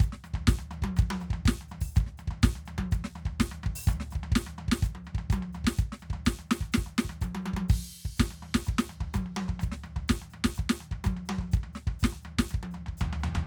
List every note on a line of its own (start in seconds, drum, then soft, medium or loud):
0.01 kick loud
0.01 floor tom soft
0.01 hi-hat pedal medium
0.13 snare soft
0.24 floor tom medium
0.24 hi-hat pedal soft
0.34 kick medium
0.34 floor tom medium
0.48 kick loud
0.48 snare loud
0.48 hi-hat pedal medium
0.59 floor tom medium
0.71 floor tom medium
0.71 hi-hat pedal soft
0.83 kick medium
0.83 high tom loud
0.97 kick loud
0.97 floor tom medium
0.97 hi-hat pedal medium
1.11 high tom loud
1.21 floor tom medium
1.21 hi-hat pedal soft
1.31 kick medium
1.31 floor tom medium
1.46 kick loud
1.46 snare loud
1.46 hi-hat pedal medium
1.62 floor tom soft
1.69 floor tom medium
1.69 hi-hat pedal soft
1.81 open hi-hat medium
1.81 kick medium
1.96 kick loud
1.96 floor tom medium
1.96 hi-hat pedal medium
2.07 snare soft
2.18 floor tom medium
2.18 hi-hat pedal soft
2.28 kick medium
2.28 floor tom medium
2.43 kick loud
2.43 snare loud
2.43 hi-hat pedal medium
2.56 floor tom medium
2.66 floor tom medium
2.66 hi-hat pedal soft
2.79 kick medium
2.79 high tom loud
2.92 kick loud
2.92 floor tom medium
2.92 hi-hat pedal medium
3.05 snare medium
3.14 floor tom medium
3.14 hi-hat pedal soft
3.26 kick medium
3.26 floor tom medium
3.40 kick medium
3.40 snare loud
3.40 hi-hat pedal medium
3.52 floor tom medium
3.63 kick medium
3.63 floor tom medium
3.63 hi-hat pedal soft
3.76 open hi-hat loud
3.88 kick loud
3.88 floor tom loud
3.88 hi-hat pedal medium
4.01 snare medium
4.11 floor tom medium
4.11 hi-hat pedal medium
4.16 kick medium
4.24 floor tom medium
4.32 kick loud
4.32 snare loud
4.32 hi-hat pedal medium
4.47 floor tom medium
4.57 floor tom medium
4.57 hi-hat pedal soft
4.69 kick medium
4.69 snare loud
4.83 kick loud
4.83 floor tom medium
4.83 hi-hat pedal medium
4.96 high tom medium
5.05 floor tom medium
5.05 hi-hat pedal soft
5.15 kick medium
5.15 floor tom medium
5.31 kick loud
5.31 hi-hat pedal medium
5.31 high tom loud
5.43 floor tom medium
5.53 floor tom medium
5.53 hi-hat pedal soft
5.65 kick medium
5.65 snare loud
5.78 kick loud
5.78 hi-hat pedal medium
5.93 snare medium
6.00 floor tom medium
6.00 hi-hat pedal soft
6.11 kick medium
6.11 floor tom medium
6.26 kick medium
6.26 snare loud
6.26 hi-hat pedal medium
6.40 floor tom medium
6.47 hi-hat pedal soft
6.52 snare loud
6.61 kick medium
6.61 floor tom soft
6.73 snare loud
6.73 hi-hat pedal medium
6.78 kick medium
6.87 floor tom medium
6.95 snare loud
6.95 hi-hat pedal soft
7.05 kick medium
7.10 floor tom medium
7.22 kick medium
7.22 hi-hat pedal medium
7.22 high tom loud
7.35 high tom loud
7.42 hi-hat pedal soft
7.46 high tom loud
7.54 kick medium
7.54 high tom loud
7.69 kick loud
7.69 hi-hat pedal medium
7.69 crash medium
7.91 hi-hat pedal soft
8.06 kick medium
8.18 kick loud
8.18 snare loud
8.18 hi-hat pedal medium
8.31 floor tom medium
8.43 floor tom medium
8.55 kick medium
8.55 snare loud
8.65 kick medium
8.65 floor tom medium
8.65 hi-hat pedal medium
8.79 snare loud
8.90 floor tom medium
9.01 kick medium
9.01 floor tom medium
9.14 kick medium
9.14 hi-hat pedal medium
9.14 high tom loud
9.27 floor tom soft
9.35 hi-hat pedal soft
9.35 high tom loud
9.49 kick medium
9.49 floor tom medium
9.60 kick medium
9.60 floor tom medium
9.60 hi-hat pedal medium
9.72 snare medium
9.83 floor tom medium
9.83 hi-hat pedal soft
9.97 kick medium
9.97 floor tom medium
10.09 kick medium
10.09 snare loud
10.09 hi-hat pedal medium
10.22 floor tom soft
10.30 floor tom medium
10.30 hi-hat pedal soft
10.45 kick medium
10.45 snare loud
10.55 floor tom medium
10.55 hi-hat pedal medium
10.60 kick medium
10.70 snare loud
10.76 hi-hat pedal soft
10.81 floor tom soft
10.92 kick medium
10.92 floor tom medium
11.05 kick medium
11.05 hi-hat pedal medium
11.05 high tom loud
11.17 floor tom medium
11.26 hi-hat pedal soft
11.26 high tom loud
11.39 kick medium
11.39 floor tom medium
11.52 kick loud
11.52 hi-hat pedal medium
11.64 floor tom medium
11.74 snare medium
11.74 hi-hat pedal soft
11.88 kick medium
11.88 floor tom medium
12.00 kick medium
12.00 hi-hat pedal medium
12.05 snare loud
12.13 floor tom soft
12.22 floor tom medium
12.22 hi-hat pedal soft
12.39 kick medium
12.39 snare loud
12.48 floor tom medium
12.48 hi-hat pedal medium
12.55 kick medium
12.63 high tom loud
12.71 floor tom medium
12.71 hi-hat pedal soft
12.87 kick medium
12.87 floor tom medium
12.98 kick medium
12.98 floor tom loud
12.98 hi-hat pedal medium
13.13 floor tom loud
13.20 hi-hat pedal soft
13.24 floor tom loud
13.35 kick medium
13.35 floor tom loud